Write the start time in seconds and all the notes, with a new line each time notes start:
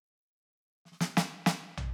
0.85 snare
0.92 snare
0.97 snare, hi-hat pedal
1.17 snare
1.46 snare, hi-hat pedal
1.78 floor tom